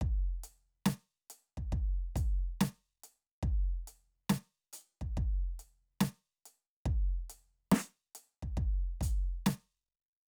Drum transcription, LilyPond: \new DrumStaff \drummode { \time 4/4 \tempo 4 = 70 bd8 hh8 \tuplet 3/2 { sn16 r16 r16 hh16 r16 bd16 } <bd cymc>8 <bd hh>8 sn8 hh8 | bd8 hh8 \tuplet 3/2 { sn16 r16 r16 hh16 r16 bd16 } bd8 hh8 sn8 hh8 | bd8 hh8 \tuplet 3/2 { sn16 r16 r16 hh16 r16 bd16 } bd8 <bd hh>8 sn4 | }